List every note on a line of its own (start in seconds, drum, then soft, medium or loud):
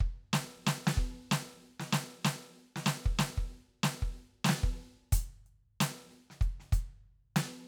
0.01 kick medium
0.34 snare loud
0.67 snare loud
0.88 snare loud
0.98 kick medium
1.32 snare loud
1.80 snare medium
1.93 snare loud
2.25 snare loud
2.76 snare medium
2.87 snare loud
3.06 kick medium
3.19 snare loud
3.38 kick medium
3.84 snare loud
4.03 kick medium
4.45 snare loud
4.49 snare loud
4.64 kick medium
5.13 closed hi-hat loud
5.13 kick medium
5.47 closed hi-hat soft
5.81 closed hi-hat loud
5.81 snare loud
6.11 snare soft
6.11 closed hi-hat soft
6.31 snare soft
6.42 kick medium
6.42 closed hi-hat soft
6.42 crash soft
6.60 snare soft
6.65 snare soft
6.73 closed hi-hat medium
6.73 kick medium
7.37 snare loud
7.37 closed hi-hat medium